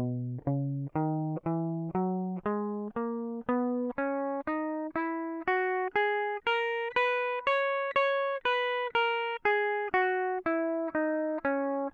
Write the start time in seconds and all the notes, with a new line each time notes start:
0.00 B2
0.49 C#3
0.97 D#3
1.47 E3
1.96 F#3
2.47 G#3
2.97 A#3
3.50 B3
3.99 C#4
4.48 D#4
4.96 E4
5.48 F#4
5.96 G#4
6.47 A#4
6.97 B4
7.47 C#5
7.97 C#5
8.46 B4
8.96 A#4
9.46 G#4
9.94 F#4
10.47 E4
10.95 D#4
11.46 C#4